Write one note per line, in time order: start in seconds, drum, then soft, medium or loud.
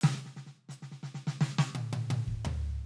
0.01 snare loud
0.01 percussion medium
0.15 snare soft
0.26 snare soft
0.36 snare soft
0.46 snare soft
0.69 snare soft
0.69 percussion medium
0.82 snare soft
0.92 snare soft
1.03 snare soft
1.14 snare soft
1.27 snare medium
1.41 snare loud
1.58 snare loud
1.75 high tom loud
1.93 high tom loud
1.93 percussion soft
2.10 high tom loud
2.28 kick soft
2.45 floor tom loud